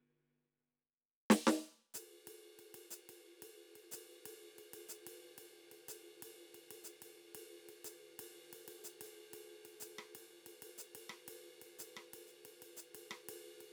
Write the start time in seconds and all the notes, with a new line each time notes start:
1.30 snare
1.47 snare
1.94 hi-hat pedal, ride
2.27 ride
2.59 ride
2.74 ride
2.90 hi-hat pedal
3.09 ride
3.42 ride
3.75 ride
3.91 hi-hat pedal, ride
4.11 hi-hat pedal
4.25 ride
4.58 ride
4.73 ride
4.89 hi-hat pedal
5.07 ride
5.38 ride
5.71 ride
5.88 hi-hat pedal, ride
6.22 ride
6.54 ride
6.71 ride
6.84 hi-hat pedal
7.02 ride
7.35 ride
7.69 ride
7.84 hi-hat pedal, ride
8.19 ride
8.53 ride
8.68 ride
8.84 hi-hat pedal
9.01 hi-hat pedal, ride
9.33 ride
9.65 ride
9.80 hi-hat pedal, ride
9.98 cross-stick
10.15 ride
10.46 ride
10.62 ride
10.78 hi-hat pedal
10.95 ride
11.09 cross-stick
11.28 ride
11.61 ride
11.79 hi-hat pedal, ride
11.97 cross-stick
12.13 ride
12.27 hi-hat pedal
12.45 ride
12.62 ride
12.77 hi-hat pedal
12.95 ride
13.11 cross-stick
13.29 ride
13.60 ride